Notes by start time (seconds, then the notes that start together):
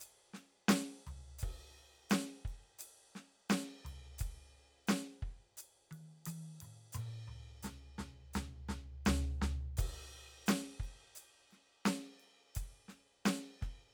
0.01 hi-hat pedal, ride
0.34 snare, ride
0.69 snare, hi-hat pedal, ride
1.07 floor tom, ride
1.39 hi-hat pedal, crash
1.44 kick
2.10 snare, hi-hat pedal, ride
2.46 kick, ride
2.80 hi-hat pedal, ride
3.16 snare, ride
3.50 snare, hi-hat pedal, ride
3.85 floor tom, ride
4.19 kick, hi-hat pedal, ride
4.88 snare, hi-hat pedal, ride
5.23 kick
5.58 hi-hat pedal, ride
5.92 high tom, ride
6.26 hi-hat pedal, high tom, ride
6.61 mid tom, ride
6.93 hi-hat pedal, mid tom, ride
7.28 floor tom
7.63 snare, floor tom, hi-hat pedal
7.99 snare, floor tom
8.34 snare, floor tom, hi-hat pedal
8.69 snare, floor tom
9.06 snare, floor tom, hi-hat pedal
9.42 snare, floor tom
9.78 kick, hi-hat pedal, crash
10.47 snare, hi-hat pedal, ride
10.81 kick, ride
11.16 hi-hat pedal, ride
11.52 snare, ride
11.86 snare, hi-hat pedal, ride
12.20 ride
12.56 kick, hi-hat pedal, ride
12.89 snare, ride
13.26 snare, hi-hat pedal, ride
13.62 kick, snare, ride